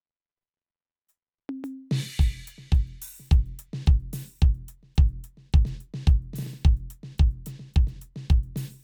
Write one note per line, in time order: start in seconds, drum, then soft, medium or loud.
1.10 hi-hat pedal soft
1.51 high tom loud
1.65 hi-hat pedal medium
1.65 high tom loud
1.92 snare loud
1.92 crash loud
2.21 kick loud
2.21 closed hi-hat medium
2.32 snare soft
2.49 closed hi-hat medium
2.59 snare soft
2.73 kick loud
2.73 closed hi-hat soft
2.88 closed hi-hat soft
3.03 open hi-hat loud
3.21 snare soft
3.28 hi-hat pedal soft
3.33 kick loud
3.33 closed hi-hat soft
3.39 snare soft
3.47 closed hi-hat soft
3.60 closed hi-hat medium
3.75 snare medium
3.88 kick loud
3.88 closed hi-hat soft
4.01 closed hi-hat soft
4.14 open hi-hat medium
4.14 snare medium
4.29 snare soft
4.40 kick loud
4.40 closed hi-hat soft
4.40 hi-hat pedal soft
4.56 closed hi-hat soft
4.70 closed hi-hat medium
4.84 snare soft
4.97 kick loud
4.97 closed hi-hat soft
5.10 closed hi-hat soft
5.25 closed hi-hat medium
5.39 snare soft
5.54 kick loud
5.54 closed hi-hat soft
5.67 snare medium
5.67 closed hi-hat soft
5.82 closed hi-hat soft
5.95 snare medium
6.08 kick loud
6.08 closed hi-hat soft
6.23 closed hi-hat soft
6.35 open hi-hat medium
6.35 snare medium
6.40 snare medium
6.44 snare soft
6.48 snare medium
6.55 snare soft
6.62 snare soft
6.62 closed hi-hat soft
6.62 hi-hat pedal soft
6.66 kick loud
6.71 snare soft
6.78 closed hi-hat soft
6.92 closed hi-hat medium
7.05 snare medium
7.20 kick loud
7.20 closed hi-hat soft
7.32 closed hi-hat soft
7.47 closed hi-hat medium
7.47 snare medium
7.61 snare soft
7.75 kick loud
7.75 closed hi-hat soft
7.89 snare soft
7.89 closed hi-hat soft
8.03 closed hi-hat medium
8.17 snare medium
8.31 kick loud
8.31 closed hi-hat soft
8.45 closed hi-hat soft
8.57 open hi-hat medium
8.57 snare medium
8.72 snare soft
8.75 snare soft